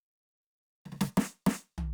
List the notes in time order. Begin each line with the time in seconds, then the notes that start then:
0.86 snare
0.92 snare
0.98 snare, hi-hat pedal
1.18 snare
1.47 snare, hi-hat pedal
1.78 floor tom